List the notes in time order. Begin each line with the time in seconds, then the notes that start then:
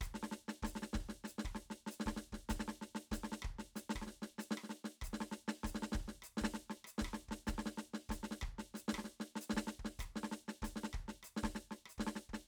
0.01 kick, cross-stick, hi-hat pedal
0.14 snare
0.23 snare
0.32 snare
0.48 snare
0.63 kick, snare, hi-hat pedal
0.76 snare
0.82 snare
0.93 kick, snare
1.02 kick
1.09 snare
1.24 snare, hi-hat pedal
1.39 snare
1.45 kick, cross-stick
1.55 snare
1.70 snare
1.87 snare
1.91 hi-hat pedal
2.00 snare
2.06 kick, snare
2.17 snare
2.33 kick, snare
2.49 kick, snare, hi-hat pedal
2.60 snare
2.68 snare
2.82 snare
2.95 snare
3.12 kick, snare, hi-hat pedal
3.24 snare
3.32 snare
3.42 kick, cross-stick
3.59 snare
3.76 snare, hi-hat pedal
3.90 snare
3.96 kick, cross-stick
4.02 snare
4.07 snare
4.22 snare
4.39 snare, hi-hat pedal
4.51 snare
4.58 cross-stick
4.64 snare
4.70 snare
4.85 snare
5.02 kick, cross-stick, hi-hat pedal
5.13 snare
5.21 snare
5.32 snare
5.48 snare
5.64 kick, snare, hi-hat pedal
5.75 snare
5.83 snare
5.92 kick, snare
6.03 kick
6.08 snare
6.22 cross-stick, hi-hat pedal
6.37 snare
6.41 kick, snare
6.54 snare
6.70 snare
6.85 cross-stick, hi-hat pedal
6.98 kick, snare
7.05 cross-stick
7.08 cross-stick
7.14 snare
7.29 kick, snare
7.47 kick, snare, hi-hat pedal
7.56 kick, snare
7.66 snare
7.78 snare
7.94 snare
8.09 kick, snare, hi-hat pedal
8.23 snare
8.31 snare
8.42 kick, cross-stick
8.50 kick
8.59 snare
8.74 snare, hi-hat pedal
8.88 snare
8.93 kick, cross-stick
8.98 snare
9.04 snare
9.20 snare
9.36 snare
9.41 hi-hat pedal
9.50 kick, snare
9.57 snare
9.67 snare
9.79 kick
9.85 snare
9.99 kick, cross-stick, hi-hat pedal
10.16 snare
10.24 snare
10.32 snare
10.48 snare
10.62 kick, snare, hi-hat pedal
10.76 snare
10.84 snare
10.93 kick, cross-stick
11.08 snare
11.23 cross-stick, hi-hat pedal
11.37 snare
11.43 kick, snare
11.55 snare
11.71 snare
11.86 cross-stick, hi-hat pedal
11.98 kick, snare
12.07 snare
12.16 snare
12.29 kick
12.34 snare